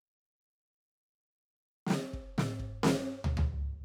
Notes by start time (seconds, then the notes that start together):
1.87 snare
1.90 snare
2.13 kick
2.38 snare, high tom
2.59 kick
2.83 snare
2.86 snare
3.24 floor tom
3.37 floor tom